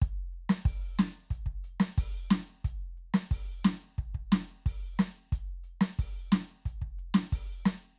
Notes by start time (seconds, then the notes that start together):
0.01 closed hi-hat, kick
0.33 closed hi-hat
0.49 snare
0.65 open hi-hat, kick
0.97 closed hi-hat, snare, hi-hat pedal
1.30 closed hi-hat, kick
1.46 kick
1.64 closed hi-hat
1.80 snare
1.98 open hi-hat, kick
2.29 closed hi-hat, snare, hi-hat pedal
2.64 closed hi-hat, kick
2.97 closed hi-hat
3.14 snare
3.31 open hi-hat, kick
3.63 closed hi-hat, snare, hi-hat pedal
3.98 kick, closed hi-hat
4.14 kick, crash
4.32 closed hi-hat, snare
4.66 open hi-hat, kick
4.96 closed hi-hat, snare, hi-hat pedal
5.32 closed hi-hat, kick
5.64 closed hi-hat
5.81 snare
5.99 open hi-hat, kick
6.32 closed hi-hat, snare, hi-hat pedal
6.65 closed hi-hat, kick
6.82 kick
6.99 closed hi-hat
7.14 snare
7.32 open hi-hat, kick
7.64 closed hi-hat, snare, hi-hat pedal